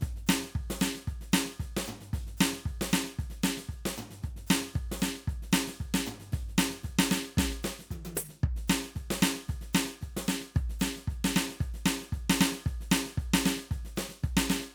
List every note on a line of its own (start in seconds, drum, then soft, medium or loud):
0.01 kick medium
0.01 snare medium
0.16 snare soft
0.27 snare loud
0.27 hi-hat pedal medium
0.43 snare soft
0.55 kick medium
0.55 snare soft
0.70 snare loud
0.79 snare loud
0.79 hi-hat pedal medium
0.95 snare soft
1.07 kick medium
1.07 snare soft
1.21 snare soft
1.32 snare loud
1.32 hi-hat pedal medium
1.46 snare soft
1.60 kick medium
1.60 snare soft
1.77 snare loud
1.84 floor tom loud
1.84 hi-hat pedal medium
2.01 snare soft
2.13 kick medium
2.13 snare medium
2.27 snare soft
2.37 snare loud
2.37 hi-hat pedal medium
2.53 snare soft
2.66 kick medium
2.66 snare soft
2.81 snare loud
2.91 snare loud
2.91 hi-hat pedal medium
3.04 snare soft
3.19 kick medium
3.19 snare soft
3.30 snare soft
3.43 snare loud
3.43 hi-hat pedal medium
3.57 snare medium
3.69 kick medium
3.69 snare soft
3.85 snare loud
3.96 floor tom loud
3.96 hi-hat pedal medium
4.11 snare soft
4.23 kick medium
4.23 snare soft
4.36 snare soft
4.47 snare loud
4.47 hi-hat pedal medium
4.62 snare soft
4.74 kick medium
4.74 snare soft
4.92 snare loud
4.99 snare loud
4.99 hi-hat pedal medium
5.15 snare soft
5.28 kick medium
5.28 snare soft
5.42 snare soft
5.52 snare loud
5.52 hi-hat pedal medium
5.67 snare medium
5.76 hi-hat pedal soft
5.80 kick medium
5.80 snare soft
5.94 snare loud
6.05 floor tom loud
6.05 hi-hat pedal medium
6.20 snare soft
6.32 kick medium
6.32 snare medium
6.48 snare soft
6.58 snare loud
6.58 hi-hat pedal medium
6.71 snare soft
6.82 kick medium
6.82 snare soft
6.82 hi-hat pedal soft
6.99 snare loud
7.10 snare loud
7.10 hi-hat pedal medium
7.23 snare soft
7.37 kick medium
7.37 snare loud
7.50 snare soft
7.63 snare loud
7.63 hi-hat pedal medium
7.79 snare soft
7.91 kick medium
7.91 high tom loud
8.05 high tom loud
8.15 hi-hat pedal medium
8.15 high tom loud
8.29 snare soft
8.43 kick loud
8.56 snare soft
8.68 snare loud
8.68 hi-hat pedal medium
8.83 snare soft
8.95 kick medium
8.95 snare soft
9.10 snare loud
9.20 snare loud
9.20 hi-hat pedal medium
9.34 snare soft
9.48 kick medium
9.48 snare soft
9.61 snare soft
9.73 snare loud
9.73 hi-hat pedal medium
9.85 snare medium
10.01 kick soft
10.01 snare soft
10.17 snare loud
10.27 snare loud
10.27 hi-hat pedal medium
10.41 snare soft
10.55 kick loud
10.55 snare soft
10.69 snare soft
10.79 snare loud
10.79 hi-hat pedal medium
10.96 snare soft
11.08 kick medium
11.08 snare soft
11.24 snare loud
11.33 snare loud
11.33 hi-hat pedal medium
11.49 snare soft
11.60 kick medium
11.60 snare soft
11.74 snare soft
11.86 snare loud
11.86 hi-hat pedal medium
12.01 snare soft
12.12 kick medium
12.12 snare soft
12.30 snare loud
12.38 snare loud
12.38 hi-hat pedal medium
12.52 snare medium
12.66 kick medium
12.66 snare soft
12.81 snare soft
12.91 snare loud
12.91 hi-hat pedal medium
13.06 snare soft
13.18 kick medium
13.18 snare soft
13.34 snare loud
13.43 snare loud
13.43 hi-hat pedal medium
13.56 snare soft
13.71 kick medium
13.71 snare soft
13.85 snare soft
13.96 snare loud
13.96 hi-hat pedal medium
14.09 snare soft
14.23 kick medium
14.23 snare soft
14.37 snare loud
14.49 snare loud
14.49 hi-hat pedal medium
14.59 snare medium